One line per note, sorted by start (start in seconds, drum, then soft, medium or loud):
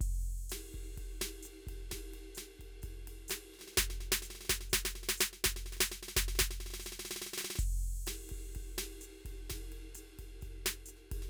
0.01 kick medium
0.01 crash medium
0.50 snare medium
0.50 hi-hat pedal medium
0.50 ride medium
0.74 kick soft
0.74 ride soft
0.85 snare soft
0.90 snare soft
0.96 kick soft
0.96 hi-hat pedal soft
0.96 ride soft
1.21 snare medium
1.21 ride medium
1.43 hi-hat pedal medium
1.43 ride soft
1.67 kick soft
1.67 ride soft
1.73 kick soft
1.91 kick soft
1.91 snare medium
1.91 hi-hat pedal soft
1.91 ride medium
1.98 kick soft
2.14 ride soft
2.35 snare medium
2.35 hi-hat pedal medium
2.35 ride medium
2.60 kick soft
2.60 ride soft
2.65 kick soft
2.82 kick soft
2.82 hi-hat pedal soft
2.82 ride medium
3.08 ride medium
3.28 snare medium
3.28 hi-hat pedal loud
3.28 ride medium
3.50 hi-hat pedal soft
3.54 snare soft
3.59 snare soft
3.61 snare soft
3.68 snare soft
3.74 snare soft
3.74 hi-hat pedal medium
3.78 kick soft
3.78 snare loud
3.90 snare soft
4.01 snare soft
4.12 snare loud
4.22 snare soft
4.22 hi-hat pedal medium
4.30 snare soft
4.35 snare soft
4.41 snare soft
4.41 hi-hat pedal soft
4.45 snare soft
4.50 kick soft
4.50 snare loud
4.61 snare soft
4.70 kick soft
4.70 snare loud
4.70 hi-hat pedal soft
4.79 kick soft
4.85 snare medium
4.95 snare soft
5.03 snare soft
5.09 snare loud
5.18 snare loud
5.18 hi-hat pedal medium
5.33 snare soft
5.44 kick soft
5.44 snare loud
5.56 snare medium
5.64 snare soft
5.64 hi-hat pedal soft
5.73 snare soft
5.77 snare soft
5.81 snare loud
5.89 snare medium
5.89 hi-hat pedal medium
6.03 snare medium
6.08 snare medium
6.17 kick soft
6.17 snare loud
6.25 kick soft
6.25 snare medium
6.35 snare soft
6.35 hi-hat pedal soft
6.39 kick soft
6.39 snare loud
6.51 snare medium
6.60 snare soft
6.66 snare soft
6.74 snare medium
6.80 snare soft
6.80 hi-hat pedal medium
6.86 snare medium
6.92 snare medium
7.00 snare medium
7.05 snare medium
7.05 hi-hat pedal medium
7.11 snare medium
7.16 snare medium
7.22 snare medium
7.27 snare medium
7.31 snare medium
7.31 hi-hat pedal soft
7.38 snare medium
7.41 snare medium
7.45 snare medium
7.50 snare medium
7.56 kick medium
7.56 snare medium
7.56 hi-hat pedal soft
7.56 crash loud
7.72 kick soft
8.07 snare medium
8.07 hi-hat pedal medium
8.07 ride medium
8.28 hi-hat pedal soft
8.28 ride soft
8.32 kick soft
8.39 snare soft
8.55 kick soft
8.55 hi-hat pedal soft
8.55 ride soft
8.62 kick soft
8.78 snare medium
8.78 ride medium
9.01 hi-hat pedal medium
9.01 ride soft
9.09 snare soft
9.25 kick soft
9.25 ride soft
9.31 kick soft
9.50 kick soft
9.50 snare medium
9.50 hi-hat pedal soft
9.50 ride medium
9.57 kick soft
9.72 ride soft
9.95 hi-hat pedal medium
9.95 ride medium
10.19 kick soft
10.19 ride soft
10.24 kick soft
10.41 kick soft
10.41 hi-hat pedal soft
10.41 ride soft
10.48 kick soft
10.66 snare loud
10.66 ride medium
10.86 hi-hat pedal medium
10.86 ride soft
10.97 snare soft
11.12 kick soft
11.12 ride medium
11.18 kick soft
11.22 snare soft